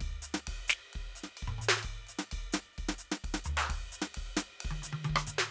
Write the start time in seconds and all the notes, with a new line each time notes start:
0.01 kick, ride bell
0.07 kick
0.09 kick
0.22 hi-hat pedal, ride
0.34 snare
0.47 kick, ride
0.68 snare, hi-hat pedal
0.93 kick, ride
1.16 hi-hat pedal, ride
1.24 snare
1.37 ride bell
1.43 kick
1.48 mid tom
1.59 hi-hat pedal, mid tom
1.69 snare
1.77 snare
1.83 kick, ride bell
2.07 hi-hat pedal, ride
2.19 snare
2.32 kick, ride bell
2.53 snare, hi-hat pedal
2.73 hi-hat pedal
2.78 kick, ride bell
2.89 snare
2.99 hi-hat pedal, ride
3.12 snare
3.24 kick, ride
3.34 snare
3.44 floor tom, hi-hat pedal
3.57 percussion
3.70 kick, ride
3.76 kick
3.91 hi-hat pedal, ride
4.02 snare
4.12 hi-hat pedal, ride
4.17 kick
4.37 snare, hi-hat pedal
4.59 hi-hat pedal, ride
4.65 kick
4.71 kick, high tom
4.73 kick
4.82 hi-hat pedal, high tom
4.93 high tom
5.04 hi-hat pedal, high tom
5.10 kick
5.16 cross-stick
5.27 hi-hat pedal, mid tom
5.39 snare
5.47 snare